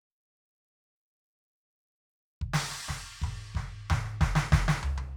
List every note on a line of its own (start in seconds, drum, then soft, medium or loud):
2.41 kick medium
2.53 snare loud
2.53 crash loud
2.70 snare soft
2.88 kick soft
2.88 snare medium
3.22 kick medium
3.22 mid tom medium
3.55 kick medium
3.55 snare medium
3.55 mid tom medium
3.90 kick medium
3.90 snare loud
3.90 mid tom loud
4.04 snare soft
4.21 kick medium
4.21 snare loud
4.35 snare loud
4.52 kick loud
4.52 snare loud
4.68 snare loud
4.80 kick soft
4.80 floor tom loud
4.98 floor tom loud